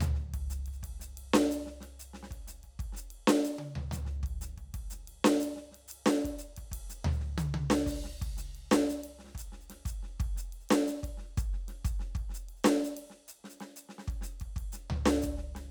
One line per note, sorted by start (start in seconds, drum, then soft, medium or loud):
0.01 floor tom loud
0.01 hi-hat pedal medium
0.15 snare soft
0.34 kick soft
0.34 ride medium
0.50 snare soft
0.50 hi-hat pedal medium
0.66 kick soft
0.66 ride soft
0.74 hi-hat pedal soft
0.83 kick soft
0.83 ride medium
1.00 snare soft
1.00 hi-hat pedal medium
1.18 ride medium
1.34 snare loud
1.51 hi-hat pedal medium
1.51 ride medium
1.66 snare soft
1.81 snare soft
1.81 ride soft
2.00 hi-hat pedal medium
2.00 ride soft
2.14 snare soft
2.23 snare soft
2.31 kick soft
2.31 ride soft
2.48 snare soft
2.48 hi-hat pedal medium
2.64 kick soft
2.64 ride soft
2.80 kick soft
2.80 ride soft
2.93 snare soft
2.93 hi-hat pedal medium
3.11 ride soft
3.28 snare loud
3.45 hi-hat pedal medium
3.45 ride soft
3.59 high tom medium
3.76 floor tom medium
3.92 floor tom loud
3.92 hi-hat pedal medium
4.06 snare soft
4.23 kick soft
4.23 ride soft
4.42 snare soft
4.42 hi-hat pedal medium
4.58 kick soft
4.58 ride soft
4.74 kick soft
4.74 ride medium
4.91 snare soft
4.91 hi-hat pedal medium
5.08 ride soft
5.25 snare loud
5.40 hi-hat pedal medium
5.40 ride medium
5.57 snare soft
5.72 snare soft
5.72 ride soft
5.88 hi-hat pedal medium
5.88 ride medium
6.06 snare loud
6.25 kick soft
6.25 ride medium
6.39 snare soft
6.39 hi-hat pedal medium
6.57 kick soft
6.57 ride soft
6.72 kick soft
6.72 ride medium
6.90 snare soft
6.90 hi-hat pedal medium
6.98 snare soft
7.05 floor tom loud
7.13 hi-hat pedal soft
7.21 snare soft
7.38 hi-hat pedal medium
7.38 high tom loud
7.55 high tom loud
7.70 snare loud
7.87 kick soft
7.87 hi-hat pedal medium
7.87 crash medium
8.04 snare soft
8.22 kick medium
8.22 ride medium
8.37 snare soft
8.37 hi-hat pedal medium
8.55 ride soft
8.72 snare loud
8.72 ride soft
8.90 hi-hat pedal medium
9.04 ride medium
9.19 snare soft
9.25 snare soft
9.28 snare soft
9.35 kick soft
9.35 hi-hat pedal medium
9.35 ride soft
9.53 snare soft
9.61 hi-hat pedal soft
9.70 snare soft
9.70 ride medium
9.86 kick medium
9.86 hi-hat pedal medium
9.86 ride soft
10.03 snare soft
10.20 kick medium
10.20 ride soft
10.36 snare soft
10.36 hi-hat pedal medium
10.53 ride soft
10.61 hi-hat pedal soft
10.70 snare loud
10.70 ride soft
10.87 snare soft
10.87 hi-hat pedal medium
11.03 kick soft
11.03 ride soft
11.18 snare soft
11.22 snare soft
11.38 kick medium
11.38 hi-hat pedal medium
11.38 ride soft
11.53 snare soft
11.68 snare soft
11.68 ride soft
11.85 kick medium
11.85 hi-hat pedal medium
11.85 ride soft
12.00 snare soft
12.15 kick medium
12.15 ride soft
12.30 snare soft
12.35 hi-hat pedal medium
12.49 ride soft
12.57 hi-hat pedal soft
12.64 snare loud
12.64 ride soft
12.85 hi-hat pedal medium
12.97 ride medium
13.06 snare soft
13.06 hi-hat pedal soft
13.28 hi-hat pedal medium
13.28 ride soft
13.45 snare soft
13.50 hi-hat pedal soft
13.61 snare soft
13.61 ride soft
13.76 hi-hat pedal medium
13.76 ride soft
13.89 snare soft
13.99 snare soft
14.08 kick medium
14.08 ride soft
14.22 snare soft
14.22 hi-hat pedal medium
14.40 kick soft
14.40 ride soft
14.56 kick medium
14.56 ride soft
14.73 snare soft
14.73 hi-hat pedal medium
14.90 floor tom loud
15.06 snare loud
15.23 kick soft
15.23 hi-hat pedal medium
15.23 ride medium
15.37 snare soft
15.56 snare soft
15.56 ride soft